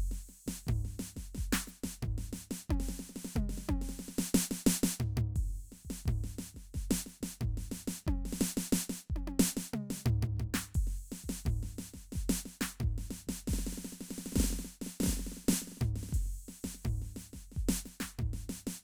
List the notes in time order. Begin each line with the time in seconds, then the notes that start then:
0.11 snare
0.26 snare, hi-hat pedal
0.47 kick, snare
0.67 kick, floor tom
0.85 snare
0.99 snare, hi-hat pedal
1.16 kick, snare
1.35 kick, snare
1.53 snare
1.66 snare, hi-hat pedal
1.84 kick, snare
2.03 kick, floor tom
2.18 snare
2.33 snare, hi-hat pedal
2.51 snare
2.70 kick, high tom
2.80 kick, snare
2.89 snare
2.99 snare
3.16 snare
3.25 snare
3.36 kick, mid tom
3.45 kick
3.49 snare
3.58 snare
3.69 kick, high tom
3.82 snare
3.89 snare
3.99 snare
4.08 snare
4.19 snare
4.35 snare
4.51 snare
4.67 snare
4.83 snare
5.00 floor tom
5.05 kick
5.17 floor tom
5.36 kick, crash
5.43 crash
5.72 snare
5.85 kick
5.90 snare
6.06 kick, floor tom
6.24 snare
6.39 snare, hi-hat pedal
6.55 kick, snare
6.74 kick, snare
6.91 snare
7.06 snare, hi-hat pedal
7.21 kick, snare
7.41 kick, floor tom
7.57 snare
7.72 snare, hi-hat pedal
7.88 snare
8.07 kick, high tom
8.16 kick
8.25 snare
8.33 snare
8.41 snare
8.57 snare
8.73 snare
8.90 snare
9.10 kick
9.16 kick, high tom
9.28 high tom
9.40 snare
9.57 snare
9.74 mid tom
9.90 snare
10.06 floor tom
10.23 floor tom
10.37 kick, floor tom
10.54 snare
10.75 kick, crash
10.87 kick, snare
11.10 snare, hi-hat pedal
11.24 kick
11.29 snare
11.46 kick, floor tom
11.63 snare
11.79 snare, hi-hat pedal
11.94 kick, snare
12.12 kick, snare
12.29 snare
12.46 snare, hi-hat pedal
12.61 kick, snare
12.80 kick, floor tom
12.98 snare
13.11 snare
13.16 hi-hat pedal
13.27 kick, snare
13.48 kick, snare
13.54 snare
13.59 snare
13.67 snare
13.73 snare
13.78 snare
13.85 snare
13.93 snare
14.01 snare
14.09 snare
14.11 snare
14.18 snare
14.26 snare
14.32 kick, snare
14.40 snare
14.44 snare
14.50 snare
14.53 snare
14.59 snare
14.65 snare
14.82 snare
14.87 snare
15.00 snare
15.04 kick, snare
15.06 snare
15.09 snare
15.13 snare
15.17 snare
15.19 snare
15.27 snare
15.32 snare
15.37 snare
15.45 snare
15.48 snare
15.53 snare
15.62 snare
15.68 snare
15.72 snare
15.77 snare, floor tom
15.82 kick
15.96 snare
16.03 snare
16.09 kick, snare
16.14 snare, crash
16.21 snare
16.48 snare, hi-hat pedal
16.64 kick, snare
16.75 snare
16.85 kick, floor tom
17.02 snare
17.16 snare, hi-hat pedal
17.33 kick, snare
17.52 snare
17.57 kick
17.69 snare
17.85 snare, hi-hat pedal
18.00 kick, snare
18.19 kick, floor tom
18.33 snare
18.49 snare, hi-hat pedal
18.67 snare